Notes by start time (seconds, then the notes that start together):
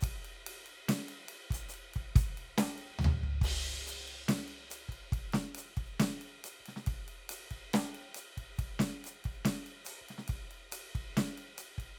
0.01 kick, hi-hat pedal, ride
0.25 ride
0.47 ride
0.66 ride
0.89 snare, hi-hat pedal, ride
1.09 ride
1.29 ride
1.51 open hi-hat, kick, ride
1.69 hi-hat pedal
1.74 ride
1.94 kick, ride
2.16 open hi-hat, kick, ride
2.38 ride
2.58 snare, ride
2.78 ride
2.99 floor tom, hi-hat pedal
3.05 floor tom
3.23 kick
3.42 kick, crash, ride
3.87 hi-hat pedal, ride
4.08 ride
4.22 hi-hat pedal
4.29 snare, ride
4.48 ride
4.71 hi-hat pedal, ride
4.89 kick, ride
5.12 kick, ride
5.33 snare, ride
5.55 hi-hat pedal, ride
5.77 kick, ride
5.86 hi-hat pedal
6.00 snare, ride
6.22 ride
6.44 hi-hat pedal, ride
6.60 kick
6.66 snare, ride
6.76 snare
6.87 kick, ride
7.08 ride
7.30 hi-hat pedal, ride
7.51 kick, ride
7.74 snare, ride
7.95 ride
8.15 hi-hat pedal, ride
8.38 kick, ride
8.56 kick, hi-hat pedal, ride
8.80 snare, ride
9.05 hi-hat pedal, ride
9.24 kick, ride
9.33 hi-hat pedal
9.45 snare, ride
9.67 ride
9.85 hi-hat pedal, ride
10.02 kick
10.09 snare, ride
10.18 snare
10.28 kick, ride
10.51 ride
10.72 hi-hat pedal, ride
10.95 kick, ride
11.17 snare, ride
11.38 ride
11.58 hi-hat pedal, ride
11.78 kick, ride